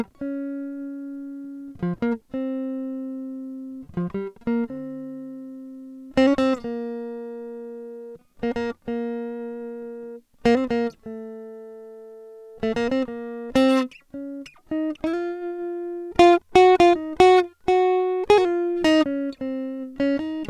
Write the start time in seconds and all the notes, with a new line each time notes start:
0.23 C#4
1.84 F3
2.04 A#3
2.35 C4
3.99 F3
4.16 G3
4.48 A#3
4.66 D3
4.71 C4
6.18 C4
6.28 C#4
6.39 C4
6.54 B3
8.45 A#3
8.57 A#3
8.89 A#3
10.46 B3
10.72 A#3
11.08 A3
12.64 A3
12.78 A#3
12.93 C4
13.04 A#3
13.57 C4
14.15 C#4
14.73 D#4
15.05 F4
16.20 F4
16.57 F#4
16.81 F4
16.95 D#4
17.21 F#4
17.69 F#4
18.31 G#4
18.46 F4
18.56 F4
18.86 D#4
19.02 C#4
19.43 C4
20.01 C#4
20.18 D#4